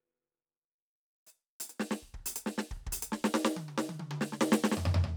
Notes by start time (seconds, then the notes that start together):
1.26 hi-hat pedal
1.60 closed hi-hat
1.69 closed hi-hat
1.80 snare
1.91 snare
2.02 kick
2.14 kick
2.26 closed hi-hat
2.36 closed hi-hat
2.46 snare
2.58 snare
2.71 kick
2.86 kick
2.92 closed hi-hat
3.02 closed hi-hat
3.12 snare
3.24 snare
3.34 snare
3.45 snare
3.56 high tom
3.68 high tom
3.78 snare
3.89 high tom
3.99 high tom
4.11 high tom
4.21 snare
4.32 snare
4.41 snare
4.52 snare
4.64 snare
4.72 snare
4.77 floor tom
4.85 floor tom
4.94 floor tom
5.04 floor tom